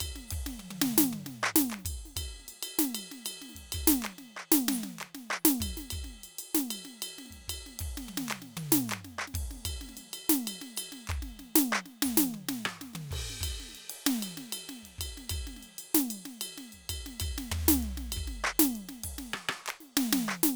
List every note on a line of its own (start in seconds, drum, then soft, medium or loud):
0.01 kick soft
0.01 ride bell loud
0.07 kick soft
0.16 snare soft
0.28 hi-hat pedal medium
0.28 ride loud
0.32 kick soft
0.39 kick soft
0.47 snare medium
0.51 kick soft
0.60 high tom medium
0.71 closed hi-hat soft
0.71 high tom medium
0.82 snare loud
0.98 snare loud
1.10 hi-hat pedal soft
1.10 mid tom medium
1.27 snare medium
1.41 percussion loud
1.41 hi-hat pedal soft
1.56 snare loud
1.69 percussion medium
1.69 hi-hat pedal medium
1.79 snare soft
1.85 kick soft
1.85 ride bell loud
1.90 hi-hat pedal soft
2.06 snare soft
2.17 kick soft
2.17 ride bell loud
2.34 snare soft
2.40 snare soft
2.47 snare soft
2.47 ride bell medium
2.63 ride bell loud
2.79 snare loud
2.95 ride bell loud
3.12 snare soft
3.26 hi-hat pedal medium
3.26 ride bell loud
3.42 snare soft
3.50 snare soft
3.55 kick soft
3.55 ride medium
3.73 kick soft
3.73 ride bell loud
3.88 snare loud
3.92 snare medium
4.03 percussion loud
4.19 snare soft
4.37 percussion medium
4.52 snare loud
4.69 snare loud
4.69 hi-hat pedal loud
4.84 snare medium
4.99 percussion medium
5.15 snare medium
5.31 percussion loud
5.37 hi-hat pedal soft
5.45 snare loud
5.61 kick soft
5.61 hi-hat pedal medium
5.61 ride bell loud
5.67 kick soft
5.78 snare soft
5.91 kick soft
5.91 ride bell loud
6.05 snare soft
6.16 snare soft
6.24 ride bell medium
6.39 ride bell medium
6.55 snare loud
6.71 ride bell loud
6.85 snare soft
7.03 hi-hat pedal medium
7.03 ride bell loud
7.19 snare soft
7.26 snare soft
7.31 kick soft
7.31 ride medium
7.38 snare soft
7.48 kick soft
7.48 hi-hat pedal soft
7.48 ride bell loud
7.67 snare soft
7.79 kick soft
7.79 ride loud
7.87 kick soft
7.98 snare medium
8.09 high tom medium
8.18 snare medium
8.25 percussion loud
8.25 hi-hat pedal soft
8.42 snare soft
8.57 hi-hat pedal medium
8.57 mid tom loud
8.72 snare loud
8.88 percussion loud
8.88 hi-hat pedal medium
9.05 snare soft
9.19 percussion medium
9.28 snare soft
9.35 kick soft
9.35 hi-hat pedal soft
9.35 ride loud
9.43 kick soft
9.46 kick soft
9.51 snare soft
9.56 snare soft
9.66 kick soft
9.66 ride bell loud
9.82 snare soft
9.89 snare soft
9.97 snare soft
9.97 ride bell medium
10.14 ride bell loud
10.30 snare loud
10.48 ride bell loud
10.62 snare soft
10.77 hi-hat pedal loud
10.77 ride bell loud
10.93 snare soft
11.08 kick soft
11.08 percussion medium
11.08 hi-hat pedal soft
11.19 kick soft
11.21 kick soft
11.21 snare soft
11.40 snare soft
11.56 snare loud
11.73 percussion loud
11.86 snare soft
12.03 kick soft
12.03 snare loud
12.03 hi-hat pedal loud
12.18 snare loud
12.34 mid tom soft
12.49 snare medium
12.66 cross-stick loud
12.82 snare soft
12.94 snare soft
12.94 mid tom medium
13.11 kick soft
13.11 hi-hat pedal soft
13.11 crash medium
13.19 kick soft
13.30 snare soft
13.41 kick soft
13.41 ride bell loud
13.60 snare soft
13.69 snare soft
13.75 ride medium
13.90 ride loud
14.07 snare loud
14.23 ride bell loud
14.38 snare medium
14.53 hi-hat pedal medium
14.53 ride bell loud
14.69 snare medium
14.83 kick soft
14.83 ride medium
14.87 snare soft
14.99 kick soft
14.99 hi-hat pedal soft
14.99 ride bell loud
15.18 snare soft
15.30 kick soft
15.30 ride bell loud
15.38 kick soft
15.47 snare soft
15.57 snare soft
15.63 ride bell soft
15.79 ride bell medium
15.95 snare loud
16.11 ride bell medium
16.26 snare medium
16.42 hi-hat pedal medium
16.42 ride bell loud
16.58 snare soft
16.71 kick soft
16.71 snare soft
16.71 ride bell soft
16.77 snare soft
16.90 kick soft
16.90 hi-hat pedal soft
16.90 ride bell loud
17.07 snare soft
17.20 kick soft
17.20 ride bell loud
17.28 kick soft
17.38 snare medium
17.52 floor tom loud
17.69 snare loud
17.83 ride medium
17.98 snare medium
18.12 ride bell loud
18.17 kick soft
18.28 snare soft
18.44 percussion loud
18.60 snare loud
18.70 hi-hat pedal soft
18.76 ride medium
18.89 snare medium
19.04 kick soft
19.04 hi-hat pedal loud
19.04 ride loud
19.19 snare medium
19.34 cross-stick loud
19.49 cross-stick loud
19.66 percussion loud
19.81 snare soft
19.97 snare loud
20.02 hi-hat pedal soft
20.13 snare loud
20.29 percussion loud
20.44 snare loud